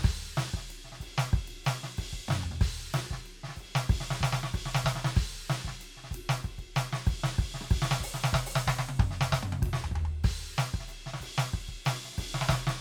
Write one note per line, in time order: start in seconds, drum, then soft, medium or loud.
0.01 kick soft
0.01 crash loud
0.04 kick loud
0.37 snare loud
0.37 hi-hat pedal medium
0.37 ride loud
0.54 kick medium
0.54 snare medium
0.69 hi-hat pedal medium
0.69 ride medium
0.85 snare soft
0.92 snare medium
1.00 kick medium
1.00 hi-hat pedal medium
1.00 ride medium
1.18 snare loud
1.33 kick loud
1.33 ride medium
1.48 ride medium
1.64 snare loud
1.64 hi-hat pedal medium
1.64 ride medium
1.84 snare medium
1.98 kick medium
1.98 ride loud
2.13 kick medium
2.28 snare loud
2.28 hi-hat pedal medium
2.28 mid tom loud
2.43 floor tom loud
2.51 high tom medium
2.61 kick loud
2.61 crash loud
2.94 snare loud
2.94 hi-hat pedal medium
2.94 ride loud
3.11 kick medium
3.11 snare medium
3.24 hi-hat pedal soft
3.24 ride medium
3.43 snare medium
3.49 snare medium
3.52 snare medium
3.52 hi-hat pedal medium
3.57 kick soft
3.57 ride medium
3.75 snare loud
3.89 kick loud
3.89 ride loud
4.01 snare medium
4.21 kick medium
4.21 snare loud
4.33 snare loud
4.43 snare loud
4.54 kick medium
4.54 ride loud
4.66 snare medium
4.75 snare loud
4.85 kick medium
4.85 snare loud
4.96 snare medium
5.05 snare loud
5.16 kick loud
5.16 crash loud
5.49 snare loud
5.49 hi-hat pedal medium
5.49 ride medium
5.65 kick medium
5.65 snare medium
5.80 snare soft
5.80 hi-hat pedal medium
5.80 ride medium
5.97 snare soft
6.04 snare medium
6.11 kick medium
6.11 hi-hat pedal medium
6.11 ride loud
6.29 snare loud
6.42 kick medium
6.42 hi-hat pedal soft
6.42 ride medium
6.58 kick medium
6.58 ride soft
6.76 snare loud
6.76 hi-hat pedal medium
6.76 ride medium
6.93 snare loud
7.06 kick loud
7.06 hi-hat pedal medium
7.06 ride loud
7.24 snare loud
7.39 kick loud
7.39 ride loud
7.54 snare medium
7.61 cross-stick medium
7.61 snare medium
7.70 kick loud
7.70 ride loud
7.82 snare loud
7.91 snare loud
8.00 open hi-hat loud
8.00 kick medium
8.14 snare medium
8.24 snare loud
8.33 kick loud
8.33 snare loud
8.46 open hi-hat loud
8.56 snare loud
8.67 kick medium
8.67 snare loud
8.79 snare medium
8.89 high tom loud
8.99 kick loud
8.99 mid tom loud
9.11 snare medium
9.21 snare loud
9.32 kick medium
9.32 snare loud
9.43 mid tom loud
9.52 high tom loud
9.62 kick loud
9.62 mid tom medium
9.62 ride loud
9.73 snare loud
9.84 floor tom loud
9.91 kick medium
9.96 floor tom loud
10.05 floor tom medium
10.22 kick soft
10.22 crash loud
10.24 kick loud
10.57 snare loud
10.57 hi-hat pedal medium
10.57 ride medium
10.74 kick medium
10.80 snare medium
10.88 snare soft
10.88 hi-hat pedal medium
10.88 ride medium
11.06 snare medium
11.14 snare medium
11.21 kick soft
11.21 hi-hat pedal medium
11.21 ride loud
11.38 snare loud
11.52 kick medium
11.52 ride medium
11.68 kick medium
11.68 ride soft
11.85 snare loud
11.85 hi-hat pedal medium
11.85 ride loud
12.05 snare soft
12.12 snare soft
12.17 kick medium
12.17 snare soft
12.17 hi-hat pedal medium
12.17 ride loud
12.21 snare soft
12.34 snare loud
12.41 snare loud
12.48 kick medium
12.48 snare loud
12.48 hi-hat pedal medium
12.52 snare loud
12.67 snare loud